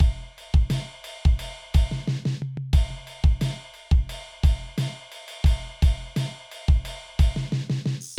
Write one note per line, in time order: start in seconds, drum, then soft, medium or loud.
0.01 kick loud
0.01 ride loud
0.40 ride medium
0.56 kick loud
0.72 snare loud
0.72 ride loud
1.06 ride loud
1.27 kick loud
1.41 ride loud
1.76 kick loud
1.76 ride loud
1.93 snare medium
2.10 snare loud
2.27 snare loud
2.44 floor tom loud
2.59 floor tom loud
2.75 kick loud
2.75 ride loud
2.92 floor tom medium
3.09 ride medium
3.26 kick loud
3.26 snare soft
3.43 snare loud
3.43 ride loud
3.76 ride medium
3.93 kick loud
3.93 snare soft
4.11 ride loud
4.46 kick loud
4.46 ride loud
4.80 snare loud
4.80 ride loud
5.14 ride loud
5.30 ride loud
5.46 kick loud
5.46 ride loud
5.84 kick loud
5.84 ride loud
6.18 snare loud
6.18 ride loud
6.54 ride loud
6.70 kick loud
6.70 snare soft
6.87 ride loud
7.21 kick loud
7.21 ride loud
7.38 snare loud
7.54 snare loud
7.72 snare loud
7.88 snare loud
8.03 crash loud